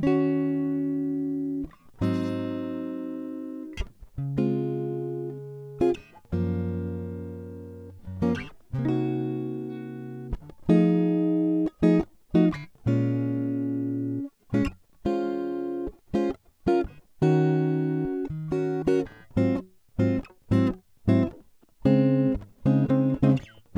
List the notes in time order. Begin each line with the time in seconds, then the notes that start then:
0.01 D#3 C#4
0.08 F#4
2.03 G#2 F#3 C4 D#4
4.20 C#3
4.39 G#3 C4 F4
5.82 C4 F4 G#4
6.33 F#2 F3 A#3 C#4
8.09 F#2
8.24 F3 A#3 C#4
8.36 D3
8.76 C3 A#3
8.86 D#4 F#4
10.43 D3
10.70 F3 D#4 G#4
11.84 F3 D#4 G#4
12.36 F3 D#4 F#4
12.88 A#2 G#3 C#4 F4
14.54 A#2 G#3 C#4 F4
15.07 G#3 C#4 F4 C5
16.15 G#3 C#4 F4 C5
16.69 C#4 F4 A#4
17.23 D#3 C#4 F#4 A#4
18.31 D#3
18.53 C#4 F#4 A#4
18.89 C#4 F#4 A#4
19.38 G#2 F#3 C4 F4
20.00 G#2 F#3 C4 F4
20.53 G#2 F#3 C4 E4
21.09 G#2 F#3 C4 E4
21.87 C#3 G#3 C4
22.67 C#3 G#3 C4 D#4
22.91 C#3 G#3 C4 D#4
23.24 C#3 G#3 C4 D#4